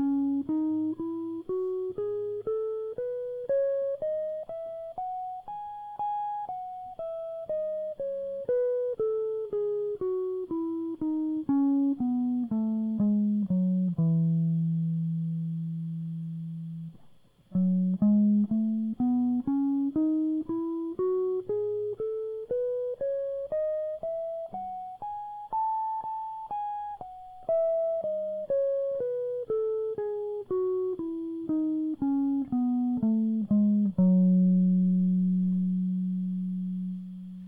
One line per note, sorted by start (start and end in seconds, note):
0.00 0.46 C#4
0.50 0.97 D#4
1.00 1.45 E4
1.50 1.95 F#4
1.99 2.45 G#4
2.48 2.97 A4
2.99 3.49 B4
3.50 3.98 C#5
4.03 4.46 D#5
4.50 4.98 E5
4.98 5.45 F#5
6.00 6.48 G#5
6.49 6.96 F#5
7.00 7.48 E5
7.50 7.96 D#5
8.00 8.47 C#5
8.50 8.96 B4
9.00 9.51 A4
9.53 9.98 G#4
10.02 10.48 F#4
10.52 10.98 E4
11.02 11.44 D#4
11.50 11.96 C#4
12.01 12.49 B3
12.53 12.98 A3
12.98 13.46 G#3
13.52 13.97 F#3
14.00 16.91 E3
17.57 17.99 F#3
18.03 18.48 G#3
18.52 18.97 A3
19.01 19.44 B3
19.48 19.93 C#4
19.97 20.45 D#4
20.50 20.96 E4
21.00 21.44 F#4
21.50 21.98 G#4
22.01 22.48 A4
22.51 22.98 B4
23.02 23.49 C#5
23.53 23.99 D#5
24.04 24.50 E5
24.55 24.98 F#5
25.03 25.50 G#5
25.53 26.04 A5
26.04 26.51 A5
26.51 26.98 G#5
27.02 27.48 F#5
27.49 28.04 E5
28.04 28.48 D#5
28.51 29.03 C#5
29.01 29.46 B4
29.51 29.97 A4
29.99 30.45 G#4
30.51 30.97 F#4
31.00 31.50 E4
31.50 31.97 D#4
32.03 32.47 C#4
32.53 33.02 B3
33.04 33.47 A3
33.52 33.93 G#3
34.00 37.49 F#3